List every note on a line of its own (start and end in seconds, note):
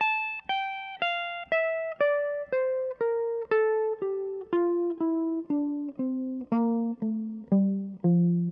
0.01 0.42 A5
0.50 0.99 G5
1.02 1.47 F5
1.52 1.95 E5
2.01 2.47 D5
2.53 2.95 C5
3.01 3.47 A#4
3.52 3.97 A4
4.02 4.46 G4
4.53 4.95 F4
5.01 5.45 E4
5.51 5.94 D4
6.00 6.46 C4
6.53 6.96 A#3
7.03 7.46 A3
7.53 7.99 G3
8.06 8.52 F3